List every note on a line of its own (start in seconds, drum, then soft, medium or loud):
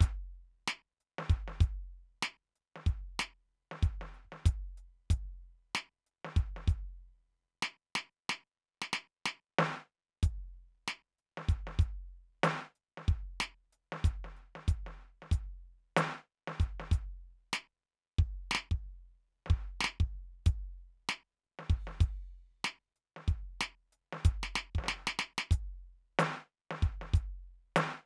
0.01 closed hi-hat loud
0.01 kick medium
0.68 closed hi-hat loud
0.68 snare loud
1.01 closed hi-hat soft
1.19 snare medium
1.30 closed hi-hat medium
1.30 kick medium
1.48 snare soft
1.61 closed hi-hat medium
1.61 kick medium
2.23 closed hi-hat medium
2.23 snare loud
2.56 closed hi-hat soft
2.76 snare soft
2.87 closed hi-hat soft
2.87 kick medium
3.20 closed hi-hat loud
3.20 snare loud
3.72 snare soft
3.83 closed hi-hat medium
3.83 kick medium
4.02 snare soft
4.14 closed hi-hat soft
4.25 kick soft
4.32 snare soft
4.46 closed hi-hat loud
4.46 kick medium
4.78 closed hi-hat soft
5.11 closed hi-hat loud
5.11 kick medium
5.75 closed hi-hat loud
5.75 snare loud
6.07 closed hi-hat soft
6.25 snare soft
6.37 closed hi-hat medium
6.37 kick medium
6.57 snare soft
6.68 closed hi-hat medium
6.68 kick medium
7.63 snare loud
7.96 snare loud
8.30 snare loud
8.82 snare medium
8.93 snare loud
9.26 snare loud
9.59 snare loud
10.23 closed hi-hat loud
10.23 kick medium
10.88 closed hi-hat medium
10.88 snare loud
11.19 closed hi-hat soft
11.38 snare soft
11.49 closed hi-hat medium
11.49 kick medium
11.67 snare soft
11.79 closed hi-hat medium
11.79 kick medium
12.44 closed hi-hat loud
12.44 snare loud
12.76 closed hi-hat soft
12.98 snare soft
13.09 kick medium
13.09 closed hi-hat soft
13.41 closed hi-hat loud
13.41 snare loud
13.73 closed hi-hat soft
13.93 snare medium
14.05 closed hi-hat medium
14.05 kick medium
14.25 snare soft
14.37 closed hi-hat soft
14.56 snare soft
14.68 closed hi-hat medium
14.68 kick medium
14.87 snare soft
15.01 closed hi-hat soft
15.22 snare soft
15.32 closed hi-hat loud
15.32 kick medium
15.97 closed hi-hat loud
15.97 snare loud
16.48 snare medium
16.60 closed hi-hat medium
16.60 kick medium
16.80 snare soft
16.92 closed hi-hat medium
16.92 kick medium
17.53 closed hi-hat loud
17.53 snare loud
18.19 kick medium
18.51 snare loud
18.55 snare loud
18.72 kick medium
19.46 kick soft
19.46 snare soft
19.50 kick medium
19.81 snare loud
19.85 snare loud
20.01 kick medium
20.46 closed hi-hat loud
20.46 kick medium
21.09 closed hi-hat medium
21.09 snare loud
21.59 snare soft
21.70 kick medium
21.70 closed hi-hat soft
21.74 crash soft
21.88 snare soft
22.01 closed hi-hat medium
22.01 kick medium
22.65 closed hi-hat medium
22.65 snare loud
22.96 closed hi-hat soft
23.17 snare soft
23.28 closed hi-hat soft
23.28 kick medium
23.61 closed hi-hat loud
23.61 snare loud
23.93 closed hi-hat soft
24.13 snare medium
24.25 closed hi-hat loud
24.25 kick medium
24.43 snare medium
24.54 snare loud
24.54 hi-hat pedal soft
24.75 kick medium
24.75 snare soft
24.84 snare soft
24.86 snare soft
24.89 snare loud
25.07 snare loud
25.19 snare loud
25.38 snare loud
25.51 closed hi-hat loud
25.51 kick medium
26.19 closed hi-hat loud
26.19 snare loud
26.71 snare medium
26.83 closed hi-hat soft
26.83 kick medium
27.02 snare soft
27.14 closed hi-hat medium
27.14 kick medium
27.76 closed hi-hat loud
27.76 snare loud